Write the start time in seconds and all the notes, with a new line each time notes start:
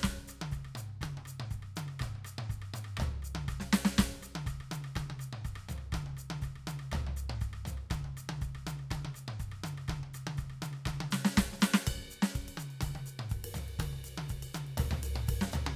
0.01 kick, snare, hi-hat pedal
0.28 cross-stick, hi-hat pedal
0.42 high tom
0.52 kick, cross-stick, hi-hat pedal
0.65 cross-stick
0.76 hi-hat pedal, mid tom
1.01 kick, cross-stick, hi-hat pedal, high tom
1.17 high tom
1.26 cross-stick, hi-hat pedal
1.40 mid tom
1.51 kick, cross-stick, hi-hat pedal
1.63 cross-stick
1.76 hi-hat pedal, high tom
1.88 cross-stick
2.00 kick, cross-stick, hi-hat pedal, mid tom
2.16 mid tom
2.25 cross-stick, hi-hat pedal
2.39 mid tom
2.50 kick, cross-stick, hi-hat pedal
2.62 cross-stick
2.74 hi-hat pedal, mid tom
2.85 cross-stick
2.97 kick, cross-stick, floor tom, hi-hat pedal
3.23 cross-stick, hi-hat pedal
3.35 high tom
3.48 kick, cross-stick, hi-hat pedal
3.60 snare
3.73 snare, hi-hat pedal
3.85 snare
3.97 kick, snare, hi-hat pedal
4.23 cross-stick, hi-hat pedal
4.36 high tom
4.47 kick, cross-stick, hi-hat pedal
4.61 cross-stick
4.72 hi-hat pedal, high tom
4.84 cross-stick
4.96 kick, cross-stick, hi-hat pedal, high tom
5.10 high tom
5.20 cross-stick, hi-hat pedal
5.33 mid tom
5.45 kick, cross-stick, hi-hat pedal
5.56 cross-stick
5.69 floor tom, hi-hat pedal
5.78 cross-stick
5.93 kick, cross-stick, hi-hat pedal, high tom
6.06 high tom
6.10 high tom
6.17 cross-stick, hi-hat pedal
6.30 high tom
6.42 kick, cross-stick, hi-hat pedal
6.56 cross-stick
6.68 hi-hat pedal, high tom
6.80 cross-stick
6.92 kick, cross-stick, floor tom, hi-hat pedal
7.07 floor tom
7.17 cross-stick, hi-hat pedal
7.30 mid tom
7.41 kick, cross-stick, hi-hat pedal
7.53 cross-stick
7.66 floor tom, hi-hat pedal
7.78 cross-stick
7.91 kick, cross-stick, hi-hat pedal, high tom
8.05 high tom
8.17 cross-stick, hi-hat pedal
8.29 high tom
8.42 kick, cross-stick, hi-hat pedal
8.55 cross-stick
8.67 hi-hat pedal, high tom
8.79 cross-stick
8.91 kick, cross-stick, hi-hat pedal, high tom
9.05 high tom
9.15 cross-stick, hi-hat pedal
9.28 mid tom
9.40 kick, cross-stick, hi-hat pedal
9.52 cross-stick
9.64 hi-hat pedal, high tom
9.78 cross-stick
9.88 kick, cross-stick, hi-hat pedal, high tom
10.03 high tom
10.14 cross-stick, hi-hat pedal
10.27 high tom
10.37 kick, cross-stick, hi-hat pedal
10.50 cross-stick
10.62 hi-hat pedal, high tom
10.73 cross-stick
10.86 kick, cross-stick, hi-hat pedal, high tom
11.01 high tom
11.11 snare, hi-hat pedal
11.25 snare
11.35 kick, snare, hi-hat pedal
11.53 snare
11.57 snare
11.59 snare, hi-hat pedal
11.62 snare
11.74 snare
11.85 kick, hi-hat pedal, ride bell
12.11 hi-hat pedal
12.23 snare
12.34 kick, hi-hat pedal, ride bell
12.48 ride bell
12.58 hi-hat pedal, high tom
12.71 ride bell
12.81 kick, hi-hat pedal, high tom, ride bell
12.95 high tom
13.06 hi-hat pedal, ride
13.19 mid tom
13.30 kick, hi-hat pedal, ride
13.45 ride
13.55 floor tom, hi-hat pedal
13.68 ride
13.79 kick, hi-hat pedal, high tom, ride
13.93 high tom
13.97 high tom
14.05 hi-hat pedal, ride
14.18 high tom
14.29 kick, hi-hat pedal, ride
14.43 ride bell
14.54 hi-hat pedal, high tom
14.67 ride
14.78 kick, floor tom, hi-hat pedal, ride
14.91 floor tom
15.03 hi-hat pedal, ride
15.16 mid tom
15.27 kick, hi-hat pedal, ride
15.41 snare
15.52 kick, floor tom, hi-hat pedal
15.67 high tom